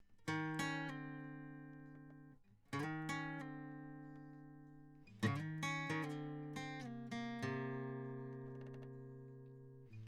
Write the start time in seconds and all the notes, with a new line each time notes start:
0.28 D#3
0.60 C#4
0.90 D3 C4
2.73 C#3
2.85 D#3
3.09 C#4
3.41 D3 C4
5.23 C#3
5.37 D#3
5.63 C#4
5.90 D#3
6.04 D3 C4
6.57 C4
6.81 C3 A#3
7.12 A#3
7.43 C3